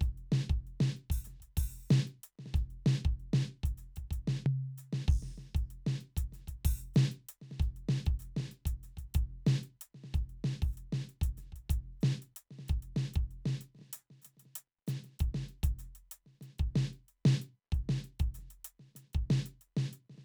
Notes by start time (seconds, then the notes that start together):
0.01 kick, closed hi-hat
0.18 closed hi-hat
0.32 snare
0.50 kick, closed hi-hat
0.67 closed hi-hat
0.81 snare
0.97 closed hi-hat
1.10 open hi-hat, kick
1.24 snare, hi-hat pedal
1.40 kick, closed hi-hat
1.57 open hi-hat, kick
1.90 snare, hi-hat pedal
1.98 snare
2.07 closed hi-hat
2.24 closed hi-hat
2.39 snare
2.46 snare
2.54 kick, closed hi-hat
2.70 closed hi-hat
2.86 snare
3.05 kick, closed hi-hat
3.20 closed hi-hat
3.34 snare
3.64 open hi-hat, kick
3.78 hi-hat pedal
3.96 kick, closed hi-hat
4.11 kick, closed hi-hat
4.28 snare
4.46 floor tom
4.78 hi-hat pedal
4.93 snare
5.08 kick, crash
5.23 snare
5.38 snare
5.55 kick, closed hi-hat
5.70 closed hi-hat
5.87 snare
6.01 closed hi-hat
6.17 closed hi-hat, kick
6.33 snare, hi-hat pedal
6.48 kick, closed hi-hat
6.65 open hi-hat, kick
6.94 snare, hi-hat pedal
7.03 snare
7.12 closed hi-hat
7.29 closed hi-hat
7.42 snare
7.51 snare
7.60 kick, closed hi-hat
7.76 closed hi-hat
7.89 snare
8.06 kick, open hi-hat
8.19 closed hi-hat, hi-hat pedal
8.37 snare
8.40 snare
8.51 closed hi-hat
8.66 open hi-hat, kick
8.83 snare, hi-hat pedal
8.97 kick, closed hi-hat
9.14 open hi-hat, kick
9.46 snare, hi-hat pedal
9.63 closed hi-hat
9.81 closed hi-hat
9.95 snare
10.04 snare
10.14 kick, closed hi-hat
10.29 closed hi-hat
10.44 snare
10.62 kick, open hi-hat
10.73 hi-hat pedal
10.77 closed hi-hat
10.93 snare
11.09 closed hi-hat
11.22 open hi-hat, kick
11.37 snare, hi-hat pedal
11.52 kick, closed hi-hat
11.70 open hi-hat, kick
12.01 snare, hi-hat pedal
12.22 closed hi-hat
12.36 closed hi-hat
12.51 snare
12.59 snare
12.68 kick, closed hi-hat
12.82 closed hi-hat
12.96 snare
13.14 kick, closed hi-hat
13.31 closed hi-hat
13.46 snare
13.50 snare
13.61 closed hi-hat
13.75 snare
13.79 snare
13.82 snare
13.93 open hi-hat
14.10 snare
14.22 closed hi-hat, hi-hat pedal
14.26 snare
14.37 snare, closed hi-hat
14.43 snare
14.46 snare
14.56 open hi-hat
14.87 snare, closed hi-hat, hi-hat pedal
15.04 snare, closed hi-hat
15.19 closed hi-hat, kick
15.35 snare
15.49 closed hi-hat
15.63 closed hi-hat, kick
15.79 hi-hat pedal
15.95 closed hi-hat
16.11 closed hi-hat
16.26 snare
16.41 snare, closed hi-hat
16.59 kick, closed hi-hat
16.76 snare
16.93 closed hi-hat
17.08 closed hi-hat
17.25 snare
17.42 closed hi-hat
17.72 kick, closed hi-hat
17.89 snare
18.04 closed hi-hat
18.20 kick, open hi-hat
18.34 hi-hat pedal
18.39 snare
18.51 closed hi-hat
18.65 closed hi-hat
18.80 snare
18.96 snare, closed hi-hat
19.13 kick, closed hi-hat
19.30 snare
19.46 closed hi-hat
19.61 closed hi-hat
19.77 snare
19.93 closed hi-hat
20.10 snare
20.15 snare
20.18 snare